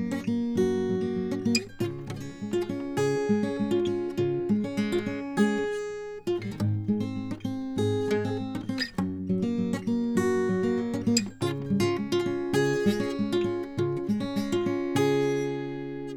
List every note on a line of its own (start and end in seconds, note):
0.00 0.58 F#3
0.13 0.28 C#4
0.29 0.99 A#3
0.57 1.59 F#2
0.57 1.71 F#4
0.91 1.10 F#3
1.03 1.42 A#3
1.18 1.58 F#3
1.48 1.63 A#3
1.82 2.37 C#3
1.82 2.10 F4
2.16 2.43 F4
2.23 2.62 C#4
2.44 2.96 G#3
2.54 3.31 F4
2.71 3.32 C#4
2.98 3.23 C#3
2.98 3.62 G#4
3.31 3.52 G#3
3.45 3.85 C#4
3.61 3.89 G#3
3.72 4.15 F4
3.87 4.17 G#3
3.87 4.60 C#4
4.19 4.45 C#3
4.19 4.51 F4
4.51 4.69 G#3
4.51 4.82 F4
4.66 5.02 C#4
4.79 5.24 G#3
4.94 5.02 F4
5.08 5.70 C#4
5.38 5.62 G#3
5.38 6.22 G#4
6.41 6.52 A2
6.54 6.79 D#3
6.61 7.62 G#2
6.90 7.07 G#3
7.02 7.40 C4
7.17 7.29 G#3
7.46 8.21 C4
7.78 8.90 G#2
7.78 8.43 G#4
8.13 8.34 G#3
8.27 8.64 C4
8.42 8.61 G#3
9.00 10.07 F#2
9.31 9.49 F#3
9.44 9.79 A#3
9.60 10.21 F#3
9.89 10.52 A#3
10.17 11.23 F#2
10.17 10.86 F#4
10.51 10.69 F#3
10.65 11.06 A#3
10.79 11.20 F#3
10.95 11.07 C#4
11.09 11.24 A#3
11.43 12.43 C#3
11.43 11.56 F4
11.72 11.90 G3
11.81 12.23 C#4
11.81 12.02 F4
12.01 12.17 G#3
12.13 13.19 F4
12.28 12.88 C#4
12.55 12.81 C#3
12.55 13.18 G#4
12.88 13.13 G#3
13.02 13.42 C#4
13.21 13.84 G#3
13.34 13.69 F4
13.47 14.17 C#4
13.79 14.04 C#3
13.79 14.08 F4
14.09 14.29 G#3
14.09 14.23 F4
14.22 14.59 C#4
14.38 15.04 G#3
14.54 16.17 F4
14.68 16.17 C#4
14.97 16.17 C#3
14.97 16.17 G#4